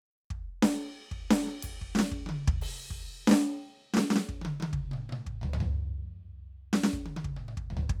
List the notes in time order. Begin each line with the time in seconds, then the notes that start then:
0.30 kick
0.62 snare, ride
1.11 kick
1.30 snare, ride
1.46 snare
1.63 kick, ride
1.81 kick
1.95 snare
1.99 snare
2.11 kick
2.26 high tom
2.29 high tom
2.47 kick
2.61 crash
2.90 kick
3.27 snare
3.31 snare
3.94 snare
3.97 snare
4.10 snare
4.16 snare
4.29 kick
4.41 high tom
4.45 high tom
4.60 high tom
4.62 high tom
4.73 kick
4.91 mid tom
4.93 mid tom
5.09 mid tom
5.12 mid tom
5.26 kick
5.41 floor tom
5.43 floor tom
5.53 floor tom
5.60 floor tom
6.73 snare
6.83 snare
6.93 kick
7.06 high tom
7.16 high tom
7.24 kick
7.36 mid tom
7.48 mid tom
7.57 kick
7.70 floor tom
7.77 floor tom
7.89 kick